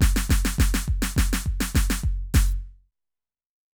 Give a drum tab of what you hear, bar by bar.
HH |p-p-------------|op--------------|
SD |oooooo-ooo-oooo-|o---------------|
BD |o-o-o-o-o-o-o-o-|o---------------|